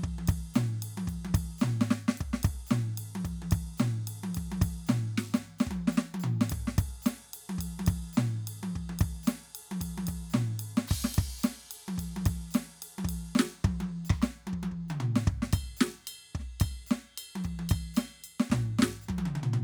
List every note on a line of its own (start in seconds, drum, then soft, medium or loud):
0.04 kick medium
0.19 high tom loud
0.28 kick loud
0.28 ride loud
0.54 snare loud
0.54 floor tom loud
0.54 percussion medium
0.83 ride loud
0.98 high tom loud
1.08 kick medium
1.08 ride medium
1.25 high tom loud
1.35 kick loud
1.35 ride loud
1.59 snare loud
1.59 percussion medium
1.64 floor tom loud
1.81 snare loud
1.91 snare loud
2.09 snare loud
2.18 kick medium
2.18 ride medium
2.34 snare loud
2.44 kick loud
2.44 ride loud
2.67 snare loud
2.67 floor tom loud
2.67 percussion medium
2.98 ride loud
3.16 high tom loud
3.25 kick medium
3.25 ride medium
3.42 high tom loud
3.51 kick loud
3.51 ride loud
3.78 snare loud
3.78 floor tom loud
3.78 percussion medium
4.08 ride loud
4.24 high tom loud
4.35 kick medium
4.35 ride loud
4.52 high tom loud
4.62 kick loud
4.62 ride loud
4.87 snare loud
4.87 floor tom loud
4.87 percussion medium
5.18 snare medium
5.34 kick soft
5.34 snare loud
5.34 percussion medium
5.44 high tom soft
5.59 snare loud
5.59 percussion medium
5.67 kick medium
5.71 high tom loud
5.88 snare loud
5.93 percussion medium
5.98 snare loud
6.15 high tom loud
6.20 floor tom loud
6.20 percussion medium
6.41 snare loud
6.41 percussion soft
6.50 kick medium
6.50 ride loud
6.68 snare medium
6.78 kick loud
6.78 ride loud
7.02 snare loud
7.02 percussion medium
7.07 ride loud
7.34 ride loud
7.50 high tom loud
7.59 kick medium
7.59 ride loud
7.80 high tom loud
7.87 kick loud
7.87 ride loud
8.13 percussion medium
8.18 snare loud
8.18 floor tom loud
8.48 ride loud
8.63 high tom loud
8.76 kick medium
8.90 high tom loud
8.99 kick loud
8.99 ride loud
9.24 percussion medium
9.28 snare loud
9.28 ride loud
9.55 ride loud
9.72 high tom loud
9.81 kick medium
9.81 ride loud
9.98 high tom loud
10.07 kick medium
10.07 ride loud
10.30 snare loud
10.30 floor tom loud
10.30 percussion medium
10.60 ride loud
10.77 snare loud
10.88 kick loud
10.88 crash loud
11.05 snare loud
11.15 kick loud
11.15 ride loud
11.39 percussion medium
11.44 snare loud
11.44 ride loud
11.71 ride loud
11.88 high tom loud
11.98 kick medium
11.98 ride loud
12.17 high tom loud
12.26 kick loud
12.26 ride loud
12.51 ride loud
12.51 percussion medium
12.55 snare loud
12.82 ride loud
12.99 high tom loud
13.05 kick medium
13.09 ride loud
13.36 snare loud
13.36 percussion medium
13.39 snare loud
13.65 kick loud
13.65 high tom loud
13.81 high tom loud
14.05 percussion medium
14.10 kick loud
14.10 high tom loud
14.22 cross-stick medium
14.22 snare loud
14.22 percussion soft
14.47 high tom loud
14.53 kick medium
14.63 high tom loud
14.72 kick soft
14.89 mid tom loud
14.89 percussion soft
15.01 floor tom loud
15.16 snare loud
15.27 kick loud
15.42 snare medium
15.53 kick loud
15.53 ride bell loud
15.77 snare loud
15.77 percussion medium
16.07 ride bell loud
16.35 kick medium
16.40 snare soft
16.60 kick loud
16.60 ride bell loud
16.87 percussion medium
16.91 snare loud
17.18 ride bell loud
17.36 high tom loud
17.44 kick medium
17.44 ride soft
17.59 high tom loud
17.70 kick loud
17.70 ride bell loud
17.95 snare loud
17.95 ride bell loud
17.95 percussion medium
18.24 ride bell medium
18.40 snare loud
18.50 kick medium
18.50 snare loud
18.50 floor tom loud
18.79 kick soft
18.79 snare loud
18.82 snare loud
19.02 percussion soft
19.09 kick medium
19.09 high tom loud
19.19 high tom loud
19.26 mid tom loud
19.36 mid tom loud
19.44 floor tom loud
19.54 floor tom loud